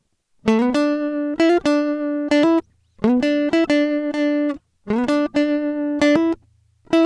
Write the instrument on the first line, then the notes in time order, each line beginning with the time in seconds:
acoustic guitar
0.49 A3
0.60 B3
0.76 D4
1.41 E4
1.67 D4
2.33 D4
2.44 E4
3.05 B3
3.24 D4
3.55 E4
3.71 D4
4.15 D4
4.92 B3
5.10 D4
5.38 D4
6.03 D4
6.17 E4
6.94 E4